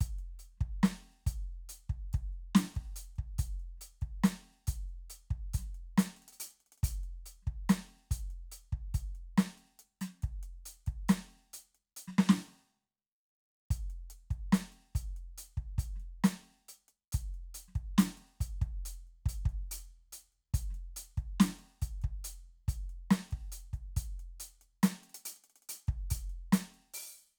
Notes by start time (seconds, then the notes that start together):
0.01 closed hi-hat, kick
0.19 closed hi-hat
0.39 closed hi-hat
0.57 kick, snare
0.62 closed hi-hat
0.83 closed hi-hat, snare
1.27 closed hi-hat, kick
1.47 closed hi-hat
1.69 closed hi-hat
1.89 kick, closed hi-hat
2.13 kick, closed hi-hat
2.33 closed hi-hat
2.55 closed hi-hat, snare
2.75 kick, closed hi-hat
2.96 closed hi-hat
3.16 kick, closed hi-hat
3.38 closed hi-hat, kick
3.60 closed hi-hat
3.77 closed hi-hat, snare
4.02 kick, closed hi-hat
4.24 closed hi-hat, snare
4.67 closed hi-hat, kick
4.89 closed hi-hat
5.10 closed hi-hat
5.31 kick, closed hi-hat
5.54 closed hi-hat, kick
5.58 snare
5.65 kick
5.75 closed hi-hat
5.98 closed hi-hat, snare
6.17 closed hi-hat
6.22 closed hi-hat
6.28 closed hi-hat
6.32 closed hi-hat
6.40 closed hi-hat
6.51 closed hi-hat
6.60 closed hi-hat
6.66 closed hi-hat
6.72 closed hi-hat
6.78 closed hi-hat
6.83 closed hi-hat, kick
7.03 closed hi-hat
7.26 closed hi-hat
7.42 snare
7.47 kick, closed hi-hat
7.69 closed hi-hat, snare
7.88 closed hi-hat
8.11 closed hi-hat, kick
8.30 closed hi-hat
8.52 closed hi-hat
8.72 kick
8.94 closed hi-hat, kick
9.15 closed hi-hat
9.38 closed hi-hat, snare
9.58 closed hi-hat
9.79 closed hi-hat
10.01 closed hi-hat, snare
10.22 kick, closed hi-hat
10.43 closed hi-hat
10.66 closed hi-hat
10.87 kick, closed hi-hat
11.09 closed hi-hat, snare
11.31 closed hi-hat
11.53 closed hi-hat
11.75 closed hi-hat
11.97 closed hi-hat
12.08 snare
12.18 snare
12.29 snare
13.71 closed hi-hat, kick
13.90 closed hi-hat
14.10 closed hi-hat
14.31 kick, closed hi-hat
14.53 closed hi-hat, snare
14.72 closed hi-hat
14.95 closed hi-hat, kick
15.17 closed hi-hat
15.38 closed hi-hat
15.57 kick, closed hi-hat
15.78 closed hi-hat, kick
15.96 snare
16.00 closed hi-hat
16.24 closed hi-hat, snare
16.45 closed hi-hat
16.69 closed hi-hat
16.88 closed hi-hat
17.12 closed hi-hat, kick
17.34 closed hi-hat
17.54 closed hi-hat
17.68 snare
17.75 kick, closed hi-hat
17.98 closed hi-hat, snare
18.17 snare, closed hi-hat
18.41 closed hi-hat, kick
18.62 kick, closed hi-hat
18.85 closed hi-hat
19.07 closed hi-hat
19.26 closed hi-hat, kick
19.45 kick, closed hi-hat
19.71 closed hi-hat
19.92 closed hi-hat
20.13 closed hi-hat
20.32 closed hi-hat
20.54 closed hi-hat, kick
20.70 snare
20.74 closed hi-hat
20.96 closed hi-hat
21.17 kick, closed hi-hat
21.40 closed hi-hat, snare
21.59 closed hi-hat
21.82 closed hi-hat, kick
22.02 kick, closed hi-hat
22.24 closed hi-hat
22.68 closed hi-hat, kick
22.89 closed hi-hat
23.11 closed hi-hat, snare
23.31 kick, closed hi-hat
23.52 closed hi-hat
23.73 kick, closed hi-hat
23.97 closed hi-hat, kick
24.19 closed hi-hat
24.40 closed hi-hat
24.61 closed hi-hat
24.83 closed hi-hat, snare
25.03 closed hi-hat
25.10 closed hi-hat
25.15 closed hi-hat
25.25 closed hi-hat
25.36 closed hi-hat
25.44 closed hi-hat
25.50 closed hi-hat
25.56 closed hi-hat
25.62 closed hi-hat
25.69 closed hi-hat
25.88 kick, closed hi-hat
26.10 closed hi-hat, kick
26.30 closed hi-hat
26.53 closed hi-hat, snare
26.74 closed hi-hat
26.94 open hi-hat